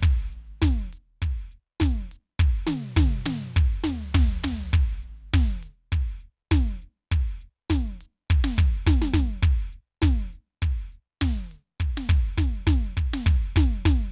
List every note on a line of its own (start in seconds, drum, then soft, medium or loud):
0.01 kick loud
0.01 hi-hat pedal medium
0.32 closed hi-hat loud
0.62 kick loud
0.62 snare loud
0.93 closed hi-hat loud
1.22 kick medium
1.51 closed hi-hat loud
1.80 kick loud
1.80 snare loud
2.11 closed hi-hat loud
2.39 kick loud
2.67 snare loud
2.67 mid tom loud
2.96 kick loud
2.96 snare loud
2.96 mid tom loud
3.25 snare loud
3.25 mid tom loud
3.56 kick loud
3.84 snare loud
3.84 floor tom loud
4.14 kick loud
4.14 snare loud
4.14 floor tom loud
4.44 snare loud
4.44 floor tom loud
4.73 kick loud
5.02 closed hi-hat loud
5.33 kick loud
5.33 snare loud
5.63 closed hi-hat loud
5.92 kick loud
6.20 closed hi-hat loud
6.51 kick loud
6.51 snare loud
6.82 closed hi-hat loud
7.11 kick loud
7.11 ride soft
7.41 closed hi-hat loud
7.70 kick medium
7.70 snare loud
8.01 closed hi-hat loud
8.30 kick loud
8.44 snare loud
8.57 open hi-hat loud
8.57 kick loud
8.87 kick loud
8.87 snare loud
9.02 snare loud
9.13 kick loud
9.13 snare loud
9.42 kick loud
9.42 hi-hat pedal medium
9.72 closed hi-hat loud
10.02 kick loud
10.02 snare loud
10.32 closed hi-hat medium
10.62 kick loud
10.92 closed hi-hat medium
11.21 kick medium
11.21 snare loud
11.51 closed hi-hat loud
11.80 kick medium
11.97 snare loud
12.09 open hi-hat loud
12.09 kick loud
12.36 kick loud
12.36 snare medium
12.36 hi-hat pedal medium
12.67 open hi-hat loud
12.67 kick loud
12.67 snare loud
12.95 kick medium
12.95 hi-hat pedal medium
13.13 snare loud
13.26 open hi-hat loud
13.26 kick loud
13.56 kick loud
13.56 snare loud
13.56 hi-hat pedal medium
13.85 open hi-hat loud
13.85 kick loud
13.85 snare loud